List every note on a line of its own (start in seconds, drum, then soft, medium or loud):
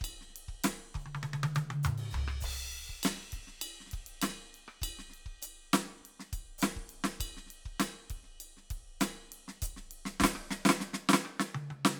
0.01 kick soft
0.01 hi-hat pedal soft
0.01 ride bell loud
0.08 kick soft
0.21 snare soft
0.29 snare soft
0.36 ride medium
0.48 kick soft
0.54 kick soft
0.64 snare loud
0.64 hi-hat pedal medium
0.64 ride bell loud
0.94 kick soft
0.94 high tom medium
1.00 kick soft
1.00 hi-hat pedal soft
1.06 high tom medium
1.15 high tom medium
1.23 high tom loud
1.33 high tom medium
1.43 high tom loud
1.55 hi-hat pedal soft
1.55 high tom loud
1.70 high tom loud
1.83 hi-hat pedal medium
1.83 mid tom loud
1.98 ride medium
2.11 kick soft
2.11 floor tom loud
2.11 hi-hat pedal soft
2.28 cross-stick medium
2.41 kick soft
2.41 hi-hat pedal medium
2.41 crash loud
2.53 cross-stick soft
2.89 kick soft
3.03 snare loud
3.03 hi-hat pedal medium
3.03 ride bell loud
3.32 kick soft
3.32 ride medium
3.39 kick soft
3.47 snare soft
3.62 hi-hat pedal soft
3.62 ride bell loud
3.80 snare soft
3.86 snare soft
3.90 kick soft
3.90 snare soft
3.90 ride medium
4.00 kick soft
4.06 ride medium
4.22 snare medium
4.22 hi-hat pedal medium
4.22 ride bell loud
4.29 snare soft
4.54 ride soft
4.68 cross-stick medium
4.81 kick soft
4.81 hi-hat pedal soft
4.81 ride bell loud
4.88 kick soft
4.99 snare soft
5.10 snare soft
5.14 ride soft
5.26 kick soft
5.42 hi-hat pedal medium
5.42 ride bell medium
5.73 snare loud
5.73 ride bell medium
6.01 kick soft
6.05 ride medium
6.20 snare soft
6.33 kick soft
6.33 ride bell medium
6.40 kick soft
6.58 hi-hat pedal medium
6.58 ride loud
6.63 snare loud
6.73 kick soft
6.73 snare soft
6.89 ride medium
7.04 snare medium
7.20 kick soft
7.20 ride bell loud
7.27 kick soft
7.31 kick soft
7.37 snare soft
7.46 snare soft
7.50 ride medium
7.66 kick soft
7.80 snare loud
7.80 hi-hat pedal medium
7.80 ride bell loud
7.93 snare soft
8.10 kick soft
8.10 ride medium
8.17 kick soft
8.23 snare soft
8.40 hi-hat pedal soft
8.40 ride bell medium
8.57 snare soft
8.61 snare soft
8.70 kick soft
8.70 ride medium
8.77 kick soft
9.01 snare loud
9.01 hi-hat pedal medium
9.01 ride bell loud
9.32 ride medium
9.48 snare medium
9.62 kick medium
9.62 hi-hat pedal loud
9.62 ride bell medium
9.70 kick soft
9.73 kick soft
9.73 snare soft
9.91 ride medium
10.05 snare medium
10.20 kick soft
10.20 snare loud
10.20 hi-hat pedal loud
10.24 snare loud
10.35 cross-stick medium
10.51 snare medium
10.65 snare loud
10.69 snare loud
10.80 snare medium
10.94 snare medium
11.09 snare loud
11.13 snare loud
11.25 cross-stick medium
11.40 snare medium
11.54 high tom loud
11.70 high tom medium
11.85 snare loud